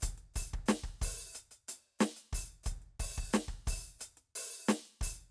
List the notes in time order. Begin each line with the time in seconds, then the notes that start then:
0.01 closed hi-hat, kick, hi-hat pedal
0.18 closed hi-hat
0.34 open hi-hat, kick, hi-hat pedal
0.54 kick
0.67 closed hi-hat, snare, hi-hat pedal
0.84 kick, closed hi-hat
0.99 kick, hi-hat pedal
1.03 open hi-hat
1.34 closed hi-hat, hi-hat pedal
1.52 closed hi-hat
1.68 open hi-hat, hi-hat pedal
2.00 closed hi-hat, snare, hi-hat pedal
2.17 closed hi-hat
2.33 open hi-hat, kick, hi-hat pedal
2.64 closed hi-hat, kick, hi-hat pedal
2.83 closed hi-hat
3.00 open hi-hat, kick
3.18 kick
3.31 closed hi-hat, snare, hi-hat pedal
3.49 kick, closed hi-hat
3.66 open hi-hat, kick, hi-hat pedal
4.00 closed hi-hat, hi-hat pedal
4.18 closed hi-hat
4.36 open hi-hat
4.68 closed hi-hat, snare, hi-hat pedal
4.86 closed hi-hat
5.02 open hi-hat, kick, hi-hat pedal